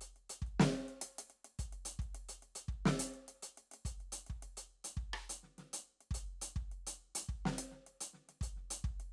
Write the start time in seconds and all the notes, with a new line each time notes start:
0.01 closed hi-hat
0.16 closed hi-hat
0.30 closed hi-hat
0.42 kick
0.47 closed hi-hat
0.60 snare
0.74 closed hi-hat
0.88 closed hi-hat
1.02 closed hi-hat
1.19 closed hi-hat
1.30 closed hi-hat
1.45 closed hi-hat
1.59 closed hi-hat, kick
1.73 closed hi-hat
1.85 closed hi-hat
1.99 kick, closed hi-hat
2.15 closed hi-hat
2.29 closed hi-hat
2.42 closed hi-hat
2.55 closed hi-hat
2.68 kick
2.72 closed hi-hat
2.86 snare
2.99 closed hi-hat
3.14 closed hi-hat
3.28 closed hi-hat
3.43 closed hi-hat
3.57 closed hi-hat
3.72 closed hi-hat
3.74 closed hi-hat
3.85 closed hi-hat, kick
4.00 closed hi-hat
4.12 closed hi-hat
4.27 kick, closed hi-hat
4.42 closed hi-hat
4.57 closed hi-hat
4.84 closed hi-hat
4.97 kick
5.13 cross-stick
5.30 closed hi-hat
5.43 snare
5.58 snare, closed hi-hat
5.73 closed hi-hat
6.01 closed hi-hat
6.11 closed hi-hat, kick
6.42 closed hi-hat
6.56 kick
6.72 closed hi-hat
6.87 closed hi-hat
7.15 closed hi-hat
7.29 kick
7.45 snare
7.51 snare
7.58 closed hi-hat
7.72 snare
7.87 snare, closed hi-hat
8.01 closed hi-hat
8.14 snare
8.28 snare, closed hi-hat
8.41 closed hi-hat, kick
8.56 snare
8.70 closed hi-hat
8.84 kick
9.00 closed hi-hat